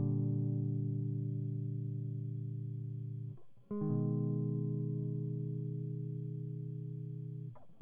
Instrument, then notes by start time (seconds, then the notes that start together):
electric guitar
0.00 G3
3.71 G#3
3.82 D#3
3.91 B2